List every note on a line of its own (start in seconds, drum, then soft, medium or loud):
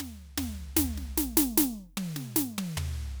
0.00 snare medium
0.00 floor tom medium
0.38 snare medium
0.38 floor tom medium
0.76 snare loud
0.76 floor tom loud
0.97 snare soft
1.17 snare medium
1.37 snare loud
1.57 snare loud
1.97 high tom loud
2.16 snare medium
2.36 snare loud
2.58 high tom loud
2.77 floor tom loud